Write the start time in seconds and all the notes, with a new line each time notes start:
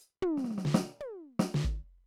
0.00 hi-hat pedal
0.22 floor tom
0.37 snare
0.44 snare
0.51 snare
0.58 snare
0.65 snare
0.74 snare
1.00 closed hi-hat, high tom
1.39 snare
1.54 snare
1.64 kick